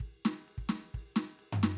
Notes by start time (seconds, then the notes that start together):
0.04 kick, ride
0.25 snare, ride
0.48 ride
0.58 kick
0.69 snare, ride
0.95 kick, ride
1.16 snare, ride
1.40 ride
1.53 floor tom
1.64 snare